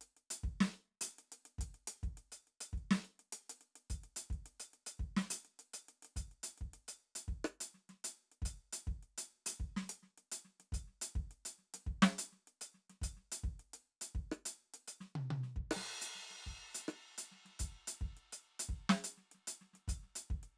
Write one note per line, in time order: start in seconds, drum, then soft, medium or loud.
0.01 closed hi-hat medium
0.17 closed hi-hat soft
0.30 closed hi-hat loud
0.43 kick soft
0.60 snare loud
0.74 closed hi-hat soft
1.01 closed hi-hat loud
1.18 closed hi-hat soft
1.32 closed hi-hat medium
1.45 closed hi-hat soft
1.58 kick soft
1.58 closed hi-hat medium
1.74 closed hi-hat soft
1.87 closed hi-hat loud
2.03 kick soft
2.03 closed hi-hat soft
2.17 closed hi-hat soft
2.32 closed hi-hat medium
2.47 closed hi-hat soft
2.61 closed hi-hat medium
2.73 kick soft
2.78 closed hi-hat soft
2.91 snare loud
3.05 closed hi-hat soft
3.19 closed hi-hat soft
3.32 closed hi-hat loud
3.50 closed hi-hat medium
3.61 closed hi-hat soft
3.76 closed hi-hat soft
3.90 closed hi-hat medium
3.90 kick soft
4.04 closed hi-hat soft
4.16 closed hi-hat loud
4.30 kick soft
4.30 closed hi-hat soft
4.46 closed hi-hat soft
4.60 closed hi-hat medium
4.73 closed hi-hat soft
4.86 closed hi-hat medium
4.99 kick soft
5.03 closed hi-hat soft
5.17 snare medium
5.30 closed hi-hat loud
5.45 closed hi-hat soft
5.59 closed hi-hat medium
5.74 closed hi-hat medium
5.88 closed hi-hat soft
6.02 closed hi-hat soft
6.05 closed hi-hat soft
6.16 closed hi-hat medium
6.16 kick soft
6.31 closed hi-hat soft
6.43 closed hi-hat loud
6.58 kick soft
6.58 closed hi-hat soft
6.73 closed hi-hat soft
6.88 closed hi-hat medium
7.15 closed hi-hat medium
7.28 kick soft
7.44 cross-stick medium
7.60 closed hi-hat loud
7.74 snare soft
7.89 snare soft
7.89 closed hi-hat soft
8.04 closed hi-hat loud
8.32 closed hi-hat soft
8.42 closed hi-hat medium
8.42 kick soft
8.73 closed hi-hat loud
8.87 kick soft
9.03 closed hi-hat soft
9.18 closed hi-hat loud
9.46 closed hi-hat loud
9.60 kick soft
9.76 snare medium
9.82 snare soft
9.89 closed hi-hat loud
10.03 snare soft
10.18 snare soft
10.18 closed hi-hat soft
10.32 closed hi-hat loud
10.45 snare soft
10.59 snare soft
10.59 closed hi-hat soft
10.72 closed hi-hat medium
10.72 kick soft
10.87 snare soft
11.01 closed hi-hat loud
11.15 kick medium
11.31 closed hi-hat soft
11.45 closed hi-hat medium
11.58 snare soft
11.74 snare soft
11.74 closed hi-hat medium
11.86 kick soft
12.02 snare loud
12.09 snare soft
12.18 closed hi-hat loud
12.32 snare soft
12.47 closed hi-hat soft
12.61 closed hi-hat medium
12.74 snare soft
12.89 snare soft
12.89 closed hi-hat soft
13.01 closed hi-hat medium
13.01 kick soft
13.16 snare soft
13.32 closed hi-hat loud
13.43 kick soft
13.59 closed hi-hat soft
13.73 closed hi-hat medium
14.01 closed hi-hat medium
14.15 kick soft
14.32 cross-stick medium
14.45 closed hi-hat loud
14.74 closed hi-hat medium
14.88 closed hi-hat medium
15.00 snare soft
15.15 high tom medium
15.30 high tom medium
15.43 snare soft
15.56 kick soft
15.71 cross-stick medium
15.71 crash medium
15.76 snare soft
16.01 closed hi-hat medium
16.15 snare soft
16.30 snare soft
16.30 closed hi-hat soft
16.46 kick soft
16.46 snare soft
16.75 closed hi-hat loud
16.88 cross-stick medium
17.18 closed hi-hat medium
17.31 snare soft
17.45 snare soft
17.45 closed hi-hat soft
17.59 closed hi-hat medium
17.59 kick soft
17.87 closed hi-hat loud
18.01 kick soft
18.17 closed hi-hat soft
18.32 closed hi-hat medium
18.59 closed hi-hat loud
18.69 kick soft
18.89 snare medium
19.04 closed hi-hat loud
19.17 snare soft
19.31 snare soft
19.31 closed hi-hat soft
19.47 closed hi-hat loud
19.61 snare soft
19.73 snare soft
19.73 closed hi-hat soft
19.88 closed hi-hat medium
19.88 kick soft
20.03 snare soft
20.15 closed hi-hat medium
20.30 kick soft
20.43 closed hi-hat soft